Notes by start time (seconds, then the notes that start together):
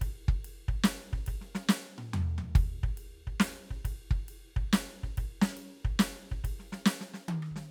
0.02 kick, ride
0.29 kick
0.45 ride
0.69 kick
0.84 snare, ride
1.14 kick
1.27 kick, ride
1.42 snare
1.56 snare
1.69 snare, hi-hat pedal
1.99 mid tom
2.14 floor tom
2.39 floor tom
2.56 kick, ride
2.84 kick
2.98 ride
3.28 kick
3.41 snare
3.45 ride
3.71 kick
3.85 kick, ride
4.11 kick
4.29 ride
4.57 kick
4.74 snare, ride
5.04 kick
5.18 kick, ride
5.42 snare
5.58 ride
5.85 kick
6.00 snare, ride
6.32 kick
6.45 kick, ride
6.60 snare
6.68 hi-hat pedal
6.73 snare
6.86 snare
6.92 hi-hat pedal
7.01 snare
7.14 snare
7.29 high tom
7.43 cross-stick
7.52 kick
7.57 snare